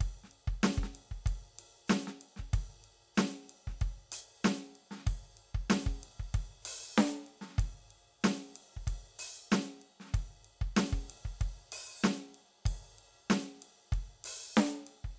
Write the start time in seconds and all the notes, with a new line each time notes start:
0.01 kick, ride
0.24 snare
0.32 ride
0.48 kick
0.64 snare, ride
0.78 kick
0.84 snare
0.96 ride
1.12 kick
1.26 kick, ride
1.59 ride
1.88 snare, hi-hat pedal, ride
2.08 snare
2.22 ride
2.37 kick, snare
2.54 kick, ride
2.84 ride
3.15 snare, hi-hat pedal, ride
3.50 ride
3.68 kick, snare
3.82 kick, ride
4.12 open hi-hat, ride
4.45 snare, hi-hat pedal, ride
4.76 ride
4.91 snare
4.95 snare
4.98 snare
5.01 snare
5.05 kick, snare, ride
5.38 ride
5.55 kick
5.70 snare, ride
5.87 kick
6.04 ride
6.20 kick
6.35 kick, ride
6.62 open hi-hat, hi-hat pedal, ride
6.97 snare, hi-hat pedal, ride
7.27 ride
7.42 snare
7.46 snare
7.49 snare
7.51 snare
7.53 snare
7.57 kick, snare, ride
7.91 ride
8.21 snare, hi-hat pedal, ride
8.56 ride
8.77 kick
8.88 kick, ride
9.19 open hi-hat, ride
9.51 snare, hi-hat pedal, ride
9.82 ride
10.00 snare
10.04 snare
10.07 snare
10.11 kick, snare, ride
10.45 ride
10.62 kick
10.75 snare, hi-hat pedal, ride
10.93 kick
11.10 ride
11.25 kick
11.41 kick, ride
11.73 open hi-hat, ride
12.04 snare, hi-hat pedal, ride
12.35 ride
12.66 kick, ride
12.99 ride
13.30 snare, ride
13.63 ride
13.93 kick, ride
14.25 open hi-hat, ride
14.57 snare, hi-hat pedal, ride
14.87 ride
15.05 kick